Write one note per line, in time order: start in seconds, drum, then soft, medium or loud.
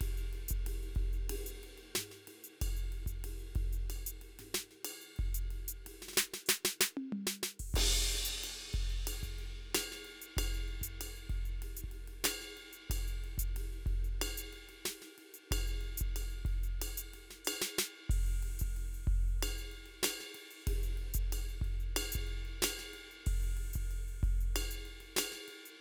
0.01 kick medium
0.01 snare soft
0.01 ride medium
0.17 closed hi-hat medium
0.33 ride soft
0.48 closed hi-hat loud
0.48 kick soft
0.67 ride medium
0.83 closed hi-hat soft
0.95 kick medium
0.95 ride soft
1.13 closed hi-hat soft
1.30 ride loud
1.46 closed hi-hat medium
1.63 ride soft
1.78 ride soft
1.95 snare loud
1.95 ride medium
1.95 floor tom soft
2.11 snare soft
2.27 ride medium
2.44 closed hi-hat medium
2.62 kick medium
2.62 ride bell medium
2.76 closed hi-hat medium
2.92 ride soft
3.06 kick soft
3.06 closed hi-hat medium
3.24 ride medium
3.39 closed hi-hat soft
3.55 kick medium
3.55 ride soft
3.73 closed hi-hat medium
3.90 snare soft
3.90 ride bell medium
4.06 closed hi-hat loud
4.22 ride soft
4.39 snare soft
4.39 high tom soft
4.39 ride medium
4.39 floor tom soft
4.43 hi-hat pedal soft
4.54 snare loud
4.71 snare soft
4.85 ride bell medium
5.01 closed hi-hat medium
5.16 kick medium
5.16 ride soft
5.34 closed hi-hat loud
5.51 ride soft
5.68 closed hi-hat loud
5.86 ride medium
6.02 snare soft
6.08 snare soft
6.13 snare soft
6.17 snare loud
6.34 snare medium
6.46 snare loud
6.46 hi-hat pedal medium
6.65 snare loud
6.81 snare loud
6.97 high tom loud
7.12 mid tom loud
7.27 snare loud
7.43 snare loud
7.60 kick soft
7.60 crash medium
7.74 kick medium
7.74 ride loud
7.94 closed hi-hat soft
8.08 ride soft
8.25 closed hi-hat loud
8.44 ride bell medium
8.59 closed hi-hat soft
8.73 kick medium
8.73 ride soft
8.90 closed hi-hat soft
9.07 ride bell medium
9.23 kick soft
9.23 closed hi-hat medium
9.39 ride soft
9.75 snare loud
9.75 ride bell loud
9.92 snare soft
10.05 ride soft
10.22 closed hi-hat medium
10.37 kick medium
10.37 ride bell loud
10.54 closed hi-hat soft
10.68 ride soft
10.82 closed hi-hat loud
10.82 kick soft
11.01 ride bell medium
11.16 closed hi-hat soft
11.30 kick soft
11.30 ride soft
11.45 closed hi-hat soft
11.62 snare soft
11.62 ride medium
11.77 closed hi-hat medium
11.84 kick soft
11.92 ride soft
12.08 ride soft
12.24 snare loud
12.24 ride bell loud
12.41 snare soft
12.57 ride soft
12.73 closed hi-hat medium
12.90 kick medium
12.90 ride bell medium
13.08 closed hi-hat medium
13.24 ride soft
13.38 closed hi-hat loud
13.38 kick soft
13.56 ride medium
13.72 closed hi-hat soft
13.86 kick medium
13.86 ride soft
14.04 closed hi-hat soft
14.22 ride bell loud
14.37 closed hi-hat loud
14.53 ride soft
14.69 ride soft
14.85 snare medium
14.85 ride medium
15.02 snare soft
15.18 ride soft
15.34 closed hi-hat medium
15.51 kick medium
15.51 ride bell loud
15.67 closed hi-hat medium
15.81 ride soft
15.97 closed hi-hat loud
15.97 kick medium
16.16 ride bell medium
16.30 closed hi-hat soft
16.45 kick medium
16.45 ride soft
16.63 closed hi-hat medium
16.82 ride bell medium
16.97 closed hi-hat loud
17.14 ride soft
17.31 snare soft
17.45 hi-hat pedal loud
17.45 ride bell loud
17.62 snare loud
17.78 snare loud
17.95 closed hi-hat soft
18.10 kick medium
18.10 crash medium
18.26 closed hi-hat soft
18.43 ride soft
18.59 kick medium
18.59 closed hi-hat loud
18.77 ride soft
18.94 closed hi-hat soft
19.07 kick medium
19.28 closed hi-hat soft
19.43 ride bell loud
19.58 closed hi-hat medium
19.72 ride soft
19.86 ride soft
20.03 snare loud
20.03 ride bell loud
20.20 snare soft
20.35 ride medium
20.51 open hi-hat medium
20.63 hi-hat pedal soft
20.67 kick medium
20.67 ride medium
20.83 closed hi-hat medium
20.97 ride soft
21.14 closed hi-hat loud
21.14 kick medium
21.33 ride bell medium
21.49 closed hi-hat soft
21.62 kick medium
21.62 ride soft
21.80 closed hi-hat soft
21.96 ride bell loud
22.12 closed hi-hat loud
22.12 kick medium
22.27 ride soft
22.45 ride soft
22.62 snare loud
22.62 ride bell loud
22.79 snare soft
22.94 ride soft
23.11 closed hi-hat soft
23.26 kick medium
23.26 crash medium
23.42 closed hi-hat soft
23.57 ride soft
23.73 kick medium
23.73 closed hi-hat medium
23.91 ride bell soft
24.08 closed hi-hat soft
24.23 kick medium
24.23 ride soft
24.41 closed hi-hat soft
24.56 ride bell loud
24.71 closed hi-hat medium
24.85 ride soft
25.01 ride soft
25.17 snare loud
25.17 ride bell loud
25.32 snare soft
25.48 ride soft
25.65 closed hi-hat medium